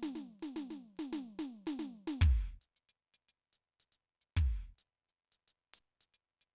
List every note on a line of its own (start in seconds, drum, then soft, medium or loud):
0.01 snare medium
0.01 hi-hat pedal medium
0.16 snare soft
0.40 snare soft
0.40 hi-hat pedal medium
0.57 snare soft
0.71 snare soft
0.98 snare soft
0.98 hi-hat pedal medium
1.14 snare medium
1.40 snare medium
1.40 hi-hat pedal medium
1.67 snare medium
1.67 hi-hat pedal medium
1.80 snare soft
2.08 snare medium
2.22 closed hi-hat medium
2.22 kick medium
2.37 closed hi-hat soft
2.62 closed hi-hat medium
2.77 closed hi-hat medium
2.90 closed hi-hat medium
3.15 closed hi-hat medium
3.29 closed hi-hat medium
3.54 closed hi-hat medium
3.81 closed hi-hat medium
3.93 closed hi-hat medium
4.22 closed hi-hat soft
4.37 closed hi-hat medium
4.37 kick medium
4.65 closed hi-hat soft
4.79 closed hi-hat medium
5.10 closed hi-hat soft
5.33 closed hi-hat medium
5.49 closed hi-hat medium
5.75 closed hi-hat loud
6.02 closed hi-hat medium
6.15 closed hi-hat medium
6.42 closed hi-hat medium